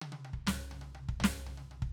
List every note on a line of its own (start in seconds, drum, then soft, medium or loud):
0.01 high tom loud
0.12 high tom medium
0.25 high tom medium
0.33 kick soft
0.47 snare loud
0.47 floor tom loud
0.71 high tom medium
0.81 high tom medium
0.95 high tom medium
1.09 kick medium
1.20 snare loud
1.20 floor tom loud
1.47 high tom medium
1.57 high tom medium
1.71 high tom medium
1.82 kick medium